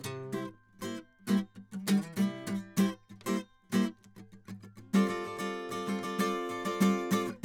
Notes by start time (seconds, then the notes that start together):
0.06 C3
0.34 E4 G4 C5
0.84 A#3 E4 F#4 C5
1.29 B2 G3 A#3 E4 G4 C5
1.57 C3
1.74 C3 G3
1.89 D3 G3 E4
2.00 E3
2.19 C3 G3 A#3 E4
2.48 C3 G3
2.78 C3 G3 A3 E4 G4 C5
3.28 G3 A#3 E4 G4 C5
3.74 G3 A#3 E4 G4 C5
4.95 G3 C4 F4 A4 D5
5.09 C4 F4 A4 D5
5.25 C4 F4 A4 D5
5.41 G3 C4 F4 A4 D5
5.72 C4 F4 A4 D5
5.89 G3 C4 F4 A4 D5
6.05 G3 C4 F4 A4 D5
6.20 G3 C4 F4 A4 D5
6.51 F4 A4 D5
6.67 C4 F4 A4 D5
6.82 G3 C4 F4 A4 D5
7.12 C4 F4 A4 D5